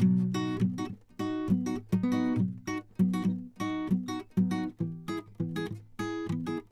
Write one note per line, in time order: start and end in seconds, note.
0.01 0.58 B2
0.01 0.62 F#3
0.35 0.61 D#4
0.35 0.61 F#4
0.61 1.00 B2
0.61 0.82 F#3
0.61 0.90 B3
0.79 0.88 D#4
0.79 0.92 F#4
1.20 1.53 D#4
1.20 1.52 F#4
1.49 1.77 F#3
1.49 1.83 B3
1.67 1.81 D#4
1.67 1.82 F#4
1.93 2.35 F#3
2.04 2.82 B3
2.12 2.46 D#4
2.12 2.41 F#4
2.37 2.81 B2
2.41 2.60 F#3
2.68 2.84 D#4
2.68 2.86 F#4
3.00 3.23 F#3
3.00 3.25 B3
3.14 3.37 E4
3.14 3.30 F#4
3.25 3.51 F#3
3.30 3.51 B3
3.60 3.92 D#4
3.60 3.92 F#4
3.92 4.08 F#3
3.92 4.22 B3
4.09 4.25 D#4
4.09 4.27 F#4
4.37 4.70 F#3
4.37 4.74 B3
4.51 4.73 D#4
4.51 4.71 F#4
4.80 5.23 E3
4.80 5.19 B3
5.09 5.24 E4
5.09 5.23 G#4
5.40 5.68 E3
5.40 5.68 B3
5.57 5.71 E4
5.57 5.72 G#4
5.71 5.87 E3
6.00 6.33 E4
6.00 6.32 G#4
6.30 6.60 E3
6.30 6.61 B3
6.47 6.65 E4
6.47 6.64 G#4